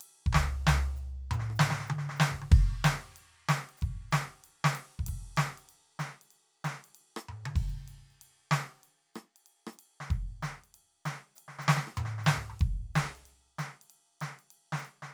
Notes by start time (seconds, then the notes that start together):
0.01 hi-hat pedal, ride
0.26 kick
0.33 snare, floor tom
0.67 snare, floor tom
0.97 hi-hat pedal
1.31 hi-hat pedal, mid tom
1.40 snare
1.50 cross-stick
1.56 snare, hi-hat pedal
1.70 snare
1.80 snare
1.87 hi-hat pedal, high tom
1.99 snare
2.09 snare
2.16 snare, hi-hat pedal
2.31 kick, mid tom
2.42 high tom
2.52 kick, crash
2.84 snare, ride
3.16 hi-hat pedal, ride
3.49 snare, hi-hat pedal, ride
3.69 ride
3.78 hi-hat pedal
3.82 kick, ride
4.11 snare, hi-hat pedal, ride
4.44 ride
4.64 snare
4.75 ride
4.99 kick
5.07 kick, ride
5.15 hi-hat pedal
5.37 snare, hi-hat pedal, ride
5.58 ride
5.69 ride
5.99 snare, hi-hat pedal, ride
6.22 ride
6.31 ride
6.64 snare, hi-hat pedal, ride
6.84 ride
6.95 ride
7.17 cross-stick, hi-hat pedal
7.29 mid tom
7.46 high tom
7.56 kick, crash
7.69 hi-hat pedal
7.88 hi-hat pedal, ride
8.11 ride
8.22 ride
8.51 snare, hi-hat pedal
8.84 ride
9.15 cross-stick, hi-hat pedal
9.36 ride
9.67 cross-stick
9.72 hi-hat pedal
9.79 ride
10.01 snare
10.11 kick, ride
10.43 snare, hi-hat pedal, ride
10.64 ride
10.74 ride
11.05 snare, hi-hat pedal, ride
11.36 hi-hat pedal, ride
11.48 snare
11.59 snare, hi-hat pedal
11.68 snare
11.77 snare
11.87 cross-stick
11.97 hi-hat pedal, mid tom
12.05 snare
12.18 snare
12.24 snare, hi-hat pedal
12.36 floor tom
12.50 floor tom
12.60 kick, ride
12.95 snare, hi-hat pedal, ride
13.15 ride
13.26 ride
13.59 snare, hi-hat pedal, ride
13.82 ride
13.90 ride
14.21 snare, hi-hat pedal, ride
14.39 ride
14.51 ride
14.73 snare
14.79 hi-hat pedal
14.85 ride
15.03 snare